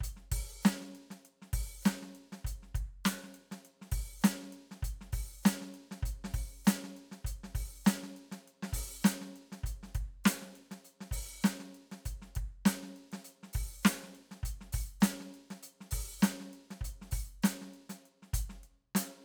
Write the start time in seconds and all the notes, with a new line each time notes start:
0.01 closed hi-hat, kick
0.17 snare
0.32 kick, open hi-hat
0.63 closed hi-hat, snare, hi-hat pedal
0.82 snare
0.95 closed hi-hat
1.11 snare, closed hi-hat
1.25 closed hi-hat
1.42 snare
1.53 kick, open hi-hat
1.82 closed hi-hat, snare, hi-hat pedal
2.02 snare
2.15 closed hi-hat
2.33 snare, closed hi-hat
2.45 closed hi-hat, kick
2.63 snare
2.75 kick, open hi-hat
3.05 closed hi-hat, snare, hi-hat pedal
3.24 snare
3.35 closed hi-hat
3.52 snare, closed hi-hat
3.65 closed hi-hat
3.82 snare
3.92 kick, open hi-hat
4.22 closed hi-hat, snare, hi-hat pedal
4.43 snare
4.53 closed hi-hat
4.71 snare, closed hi-hat
4.83 closed hi-hat, kick
5.01 snare
5.13 open hi-hat, kick
5.43 closed hi-hat, snare, hi-hat pedal
5.62 snare
5.74 closed hi-hat
5.92 snare, closed hi-hat
6.03 closed hi-hat, kick
6.25 snare
6.34 kick, open hi-hat
6.65 closed hi-hat, snare, hi-hat pedal
6.84 snare
6.97 closed hi-hat
7.12 snare, closed hi-hat
7.25 closed hi-hat, kick
7.44 snare
7.55 open hi-hat, kick
7.85 closed hi-hat, snare, hi-hat pedal
8.04 snare
8.17 closed hi-hat
8.32 snare, closed hi-hat
8.48 closed hi-hat
8.63 snare
8.73 open hi-hat, kick
9.03 closed hi-hat, snare, hi-hat pedal
9.21 snare
9.36 closed hi-hat
9.52 snare, closed hi-hat
9.64 closed hi-hat, kick
9.83 snare
9.95 kick, open hi-hat
10.25 closed hi-hat, snare, hi-hat pedal
10.42 snare
10.56 closed hi-hat
10.71 snare, closed hi-hat
10.85 closed hi-hat
11.01 snare
11.12 open hi-hat, kick
11.43 closed hi-hat, snare, hi-hat pedal
11.60 snare
11.75 closed hi-hat
11.92 snare, closed hi-hat
12.06 closed hi-hat, kick
12.22 snare
12.36 kick, open hi-hat
12.66 open hi-hat, snare, hi-hat pedal
12.83 snare
12.96 closed hi-hat
13.12 snare, closed hi-hat
13.25 closed hi-hat
13.43 snare
13.54 open hi-hat, kick
13.83 closed hi-hat, snare, hi-hat pedal
14.04 snare
14.15 closed hi-hat
14.31 snare, closed hi-hat
14.43 closed hi-hat, kick
14.61 snare
14.73 open hi-hat, kick
15.01 closed hi-hat, snare, hi-hat pedal
15.21 snare
15.34 closed hi-hat
15.51 snare, closed hi-hat
15.63 closed hi-hat
15.81 snare
15.91 open hi-hat, kick
16.21 closed hi-hat, snare, hi-hat pedal
16.41 snare
16.54 closed hi-hat
16.71 snare, closed hi-hat
16.81 closed hi-hat, kick
17.02 snare
17.12 open hi-hat, kick
17.43 closed hi-hat, snare, hi-hat pedal
17.62 snare
17.74 closed hi-hat
17.90 closed hi-hat, snare
18.06 closed hi-hat
18.23 snare
18.34 closed hi-hat, kick
18.50 snare
18.64 closed hi-hat
18.95 closed hi-hat, snare